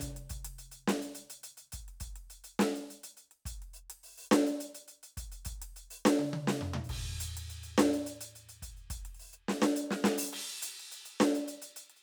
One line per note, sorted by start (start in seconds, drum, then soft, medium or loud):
0.01 closed hi-hat medium
0.01 kick soft
0.16 closed hi-hat medium
0.30 closed hi-hat medium
0.30 kick soft
0.45 closed hi-hat medium
0.58 closed hi-hat medium
0.72 closed hi-hat medium
0.88 snare loud
1.02 closed hi-hat soft
1.15 closed hi-hat medium
1.30 closed hi-hat medium
1.43 closed hi-hat medium
1.57 closed hi-hat soft
1.72 closed hi-hat medium
1.72 kick soft
1.88 closed hi-hat soft
2.00 closed hi-hat medium
2.00 kick soft
2.16 closed hi-hat soft
2.30 closed hi-hat medium
2.44 closed hi-hat medium
2.59 snare loud
2.75 closed hi-hat soft
2.90 closed hi-hat medium
3.03 closed hi-hat medium
3.17 closed hi-hat soft
3.31 closed hi-hat soft
3.46 closed hi-hat medium
3.46 kick soft
3.62 open hi-hat soft
3.74 open hi-hat medium
3.90 closed hi-hat medium
4.03 open hi-hat medium
4.17 open hi-hat medium
4.31 snare loud
4.47 closed hi-hat soft
4.60 closed hi-hat medium
4.75 closed hi-hat medium
4.88 closed hi-hat soft
5.03 closed hi-hat soft
5.17 closed hi-hat medium
5.17 kick soft
5.32 closed hi-hat soft
5.45 closed hi-hat medium
5.45 kick soft
5.62 closed hi-hat medium
5.76 open hi-hat medium
5.90 open hi-hat medium
6.05 snare loud
6.19 high tom medium
6.33 high tom medium
6.47 snare loud
6.61 mid tom medium
6.74 mid tom medium
6.84 hi-hat pedal soft
6.89 kick soft
6.89 crash medium
6.95 kick soft
7.20 closed hi-hat loud
7.37 closed hi-hat medium
7.50 closed hi-hat medium
7.63 closed hi-hat medium
7.78 snare loud
7.93 closed hi-hat soft
8.06 closed hi-hat medium
8.21 closed hi-hat medium
8.35 closed hi-hat soft
8.49 closed hi-hat soft
8.62 closed hi-hat medium
8.62 kick soft
8.77 closed hi-hat soft
8.90 closed hi-hat medium
8.90 kick soft
9.05 closed hi-hat soft
9.15 open hi-hat soft
9.19 open hi-hat medium
9.33 open hi-hat medium
9.33 hi-hat pedal soft
9.48 snare loud
9.62 snare loud
9.76 closed hi-hat medium
9.91 snare medium
10.04 snare loud
10.18 open hi-hat loud
10.32 crash medium
10.62 closed hi-hat loud
10.80 closed hi-hat soft
10.92 closed hi-hat medium
11.05 closed hi-hat medium
11.20 snare loud
11.35 closed hi-hat medium
11.48 closed hi-hat medium
11.62 closed hi-hat medium
11.76 closed hi-hat medium
11.90 closed hi-hat soft
11.96 closed hi-hat soft